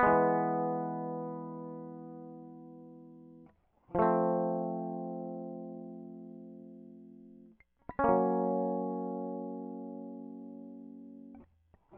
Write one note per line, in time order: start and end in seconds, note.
0.00 3.55 G#3
0.00 3.49 B3
0.08 3.53 E3
3.96 7.55 F3
3.96 7.57 A3
4.02 7.51 C4
8.00 11.43 C#4
8.05 11.46 A#3
8.09 11.46 F#3